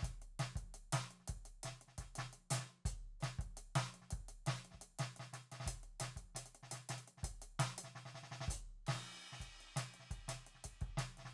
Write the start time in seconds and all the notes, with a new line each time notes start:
0.01 kick, snare
0.05 closed hi-hat
0.22 closed hi-hat
0.39 snare, closed hi-hat
0.56 kick, closed hi-hat
0.74 closed hi-hat
0.93 snare, closed hi-hat
1.11 closed hi-hat
1.20 snare
1.28 kick, closed hi-hat
1.46 closed hi-hat
1.63 snare, closed hi-hat
1.81 closed hi-hat
1.88 snare
1.98 kick, snare, closed hi-hat
2.16 snare, closed hi-hat
2.33 closed hi-hat
2.51 closed hi-hat, snare
2.54 snare
2.59 snare
2.67 snare
2.86 open hi-hat, kick
3.21 snare, closed hi-hat, hi-hat pedal
3.39 kick, closed hi-hat
3.57 closed hi-hat
3.76 snare, closed hi-hat
3.94 closed hi-hat
4.01 snare
4.11 kick, closed hi-hat
4.29 closed hi-hat
4.47 snare, closed hi-hat
4.65 closed hi-hat
4.71 kick, snare
4.81 closed hi-hat
4.99 snare, closed hi-hat
5.16 snare, closed hi-hat
5.33 snare, closed hi-hat
5.52 snare, closed hi-hat
5.60 snare
5.64 kick, snare
5.68 closed hi-hat
5.83 closed hi-hat
6.00 snare, closed hi-hat
6.17 kick, closed hi-hat
6.35 snare, closed hi-hat
6.46 closed hi-hat
6.55 closed hi-hat
6.63 snare
6.71 snare, closed hi-hat
6.89 snare, closed hi-hat
6.98 closed hi-hat
7.08 closed hi-hat
7.18 snare
7.23 kick, closed hi-hat
7.42 closed hi-hat
7.59 snare, closed hi-hat
7.78 closed hi-hat
7.84 snare
7.95 snare
8.06 snare
8.15 snare
8.23 snare
8.32 snare
8.41 snare
8.48 open hi-hat, kick
8.87 snare, crash
8.95 snare
9.33 snare
9.40 kick, closed hi-hat
9.61 closed hi-hat
9.76 snare, closed hi-hat
9.94 closed hi-hat
10.00 snare
10.11 kick, closed hi-hat
10.28 snare, closed hi-hat
10.47 closed hi-hat
10.55 snare
10.64 kick, closed hi-hat
10.81 kick, closed hi-hat
10.97 snare, closed hi-hat
11.17 snare, closed hi-hat
11.25 snare